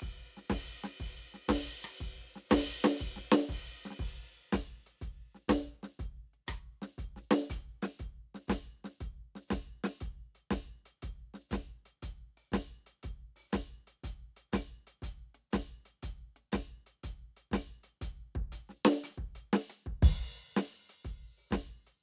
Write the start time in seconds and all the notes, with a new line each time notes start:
0.01 kick, ride
0.38 snare
0.50 kick, snare, hi-hat pedal, ride
0.84 snare
0.96 hi-hat pedal
1.00 kick, ride
1.34 snare
1.49 kick, snare, hi-hat pedal, ride
1.85 cross-stick
2.01 kick, ride
2.36 snare
2.50 kick, snare, hi-hat pedal, ride
2.73 hi-hat pedal
2.85 snare
2.97 kick, hi-hat pedal, ride
3.17 snare
3.32 snare
3.49 kick, hi-hat pedal, ride
3.86 snare
3.91 snare
4.00 kick, crash
4.35 closed hi-hat
4.53 closed hi-hat, kick, snare
4.87 closed hi-hat
5.02 closed hi-hat, kick
5.35 snare
5.49 closed hi-hat, kick, snare
5.84 snare
6.00 closed hi-hat, kick
6.34 closed hi-hat
6.47 closed hi-hat, kick, cross-stick, hi-hat pedal
6.82 snare
6.99 closed hi-hat, kick
7.17 snare
7.31 snare
7.50 closed hi-hat, kick
7.83 closed hi-hat, snare
8.00 closed hi-hat, kick
8.35 snare
8.48 closed hi-hat, kick, snare, hi-hat pedal
8.85 snare
9.01 closed hi-hat, kick
9.36 snare
9.49 closed hi-hat, kick, snare, hi-hat pedal
9.84 snare
10.01 closed hi-hat, kick
10.36 open hi-hat
10.51 closed hi-hat, kick, snare
10.86 closed hi-hat
11.03 closed hi-hat, kick
11.34 snare
11.50 closed hi-hat, kick, snare, hi-hat pedal
11.86 closed hi-hat
12.03 closed hi-hat, kick
12.38 open hi-hat
12.53 closed hi-hat, kick, snare
12.87 closed hi-hat
13.04 closed hi-hat, kick
13.36 open hi-hat
13.51 closed hi-hat, kick, snare, hi-hat pedal
13.88 closed hi-hat
14.04 closed hi-hat, kick
14.37 open hi-hat
14.53 open hi-hat, kick, snare, hi-hat pedal
14.88 closed hi-hat
15.03 closed hi-hat, kick
15.35 closed hi-hat
15.51 closed hi-hat, kick, snare, hi-hat pedal
15.86 closed hi-hat
16.03 closed hi-hat, kick
16.37 closed hi-hat
16.53 open hi-hat, kick, snare, hi-hat pedal
16.87 closed hi-hat
17.04 closed hi-hat, kick
17.37 closed hi-hat
17.52 open hi-hat, kick, snare, hi-hat pedal
17.84 closed hi-hat
18.02 closed hi-hat, kick
18.36 kick
18.53 closed hi-hat
18.70 snare
18.86 snare
19.04 closed hi-hat
19.18 kick
19.36 closed hi-hat
19.54 snare
19.70 closed hi-hat
19.87 kick
20.03 kick, crash
20.57 closed hi-hat, snare
20.90 closed hi-hat
21.05 closed hi-hat, kick
21.38 open hi-hat
21.51 closed hi-hat, kick, snare, hi-hat pedal
21.87 closed hi-hat